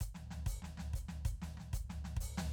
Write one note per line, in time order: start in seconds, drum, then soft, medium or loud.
0.01 kick soft
0.01 hi-hat pedal medium
0.15 snare soft
0.15 floor tom soft
0.31 snare soft
0.31 floor tom medium
0.46 kick soft
0.46 hi-hat pedal medium
0.62 snare soft
0.62 floor tom medium
0.78 snare soft
0.78 floor tom medium
0.94 kick soft
0.94 hi-hat pedal medium
1.09 snare soft
1.09 floor tom medium
1.25 kick soft
1.25 hi-hat pedal medium
1.42 snare soft
1.42 floor tom medium
1.57 snare soft
1.57 floor tom soft
1.73 kick soft
1.73 hi-hat pedal medium
1.90 snare soft
1.90 floor tom medium
2.05 snare soft
2.05 floor tom soft
2.17 kick soft
2.21 hi-hat pedal medium
2.38 snare medium
2.38 floor tom medium